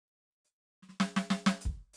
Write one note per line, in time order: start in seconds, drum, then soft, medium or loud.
0.45 hi-hat pedal soft
0.82 snare soft
0.89 snare soft
1.00 snare loud
1.16 snare medium
1.30 snare loud
1.46 snare loud
1.61 closed hi-hat medium
1.65 kick medium
1.93 hi-hat pedal medium